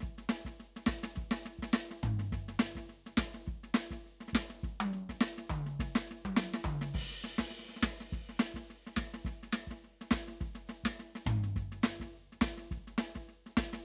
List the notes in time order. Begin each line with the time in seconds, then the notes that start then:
0.01 kick, snare
0.10 kick
0.19 snare
0.30 snare, hi-hat pedal
0.46 kick, snare
0.60 snare
0.77 snare
0.88 kick, hi-hat pedal
0.97 kick
1.04 snare
1.16 kick, snare
1.24 kick
1.32 snare
1.43 snare, hi-hat pedal
1.59 kick, snare
1.74 snare
1.91 snare
2.02 kick, floor tom, hi-hat pedal
2.13 kick
2.20 snare
2.33 kick, snare
2.39 kick
2.43 kick
2.49 snare
2.59 snare, hi-hat pedal
2.76 kick, snare
2.90 snare
3.07 snare
3.18 kick, snare, hi-hat pedal
3.25 kick
3.35 snare
3.47 kick, snare
3.55 kick
3.64 snare
3.75 snare, hi-hat pedal
3.91 kick, snare
4.06 snare
4.15 snare
4.21 snare
4.29 snare
4.34 kick, snare, hi-hat pedal
4.50 snare
4.64 kick, snare
4.71 kick
4.81 high tom
4.88 hi-hat pedal
4.94 snare
5.10 kick, snare
5.14 kick
5.21 snare
5.38 snare
5.50 kick, hi-hat pedal, mid tom
5.58 kick
5.60 kick
5.67 snare
5.80 kick, snare
5.87 kick
5.96 snare
6.06 hi-hat pedal
6.11 snare
6.25 kick, high tom
6.37 snare
6.54 snare
6.64 kick, hi-hat pedal, mid tom
6.82 snare
6.95 kick, crash
7.02 kick
7.07 kick
7.11 snare
7.21 snare, hi-hat pedal
7.39 kick, snare
7.51 snare
7.60 snare
7.66 snare
7.69 snare
7.77 snare, hi-hat pedal
7.83 kick, snare
8.01 snare
8.13 kick, snare
8.20 kick
8.29 snare
8.40 snare, hi-hat pedal
8.55 kick, snare
8.71 snare
8.87 snare
8.96 kick, snare, hi-hat pedal
9.14 snare
9.25 kick, snare
9.32 kick
9.44 snare
9.52 snare, hi-hat pedal
9.68 kick, snare
9.73 kick
9.85 snare
10.02 snare
10.10 kick, snare, hi-hat pedal
10.18 kick
10.28 snare
10.41 kick, snare
10.48 kick
10.56 snare
10.67 snare, hi-hat pedal
10.84 kick, snare
11.00 snare
11.16 snare
11.25 kick, hi-hat pedal, floor tom
11.33 kick
11.36 kick
11.44 snare
11.57 kick, snare
11.63 kick
11.72 snare
11.82 snare, hi-hat pedal
12.00 kick, snare
12.15 snare
12.33 snare
12.42 kick, snare, hi-hat pedal
12.51 kick
12.58 snare
12.72 kick, snare
12.78 kick
12.88 snare
12.98 snare, hi-hat pedal
13.16 kick, snare
13.29 snare
13.47 snare
13.57 kick, snare, hi-hat pedal
13.64 kick
13.67 kick
13.74 snare